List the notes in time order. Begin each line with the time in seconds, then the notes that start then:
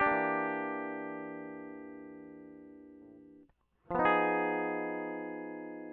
0.02 D4
0.07 A#3
0.13 E3
3.92 F3 B3
4.00 D#4
4.06 G#4